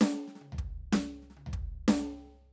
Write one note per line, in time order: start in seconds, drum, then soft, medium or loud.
0.00 snare loud
0.00 hi-hat pedal soft
0.28 snare soft
0.35 snare soft
0.41 high tom soft
0.52 floor tom medium
0.58 kick medium
0.93 snare loud
1.22 snare soft
1.30 snare soft
1.37 high tom soft
1.46 floor tom medium
1.53 kick medium
1.88 snare loud